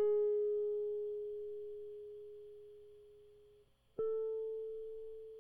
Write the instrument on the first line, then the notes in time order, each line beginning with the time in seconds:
electric guitar
0.00 G#4
4.00 A4